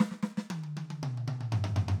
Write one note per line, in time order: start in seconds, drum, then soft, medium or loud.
0.00 snare loud
0.11 snare medium
0.23 snare medium
0.37 snare medium
0.50 high tom loud
0.63 high tom medium
0.77 high tom loud
0.90 high tom medium
1.03 mid tom loud
1.17 mid tom medium
1.28 mid tom loud
1.41 mid tom medium
1.52 floor tom loud
1.64 floor tom loud
1.76 floor tom loud
1.88 floor tom loud